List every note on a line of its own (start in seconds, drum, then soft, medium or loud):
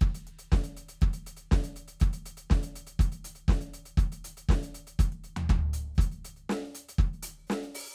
0.01 kick loud
0.01 closed hi-hat medium
0.15 closed hi-hat medium
0.27 closed hi-hat medium
0.39 closed hi-hat medium
0.52 kick loud
0.52 snare loud
0.64 closed hi-hat medium
0.77 closed hi-hat medium
0.89 closed hi-hat medium
1.01 kick loud
1.01 closed hi-hat medium
1.13 closed hi-hat medium
1.27 closed hi-hat medium
1.37 closed hi-hat medium
1.51 kick loud
1.51 snare loud
1.64 closed hi-hat medium
1.76 closed hi-hat medium
1.88 closed hi-hat medium
2.00 closed hi-hat medium
2.00 kick loud
2.13 closed hi-hat medium
2.26 closed hi-hat medium
2.37 closed hi-hat medium
2.50 kick loud
2.50 snare loud
2.63 closed hi-hat medium
2.76 closed hi-hat medium
2.87 closed hi-hat medium
2.99 closed hi-hat medium
2.99 kick loud
3.12 closed hi-hat medium
3.25 closed hi-hat medium
3.35 closed hi-hat medium
3.48 kick loud
3.48 snare loud
3.61 closed hi-hat medium
3.74 closed hi-hat medium
3.86 closed hi-hat medium
3.98 closed hi-hat medium
3.98 kick loud
4.12 closed hi-hat medium
4.24 closed hi-hat medium
4.37 closed hi-hat medium
4.49 kick loud
4.49 snare loud
4.63 closed hi-hat medium
4.75 closed hi-hat medium
4.87 closed hi-hat medium
4.99 closed hi-hat medium
4.99 kick loud
5.12 closed hi-hat soft
5.24 closed hi-hat soft
5.37 floor tom loud
5.49 kick loud
5.49 floor tom loud
5.73 open hi-hat medium
5.93 kick soft
5.93 hi-hat pedal soft
5.98 closed hi-hat medium
5.98 kick loud
6.12 closed hi-hat soft
6.25 closed hi-hat medium
6.36 closed hi-hat soft
6.50 snare loud
6.66 closed hi-hat soft
6.75 closed hi-hat loud
6.89 closed hi-hat medium
6.99 kick loud
6.99 closed hi-hat soft
7.13 closed hi-hat soft
7.23 closed hi-hat loud
7.38 open hi-hat soft
7.47 snare loud
7.47 hi-hat pedal soft
7.63 closed hi-hat soft
7.75 open hi-hat loud
7.90 open hi-hat soft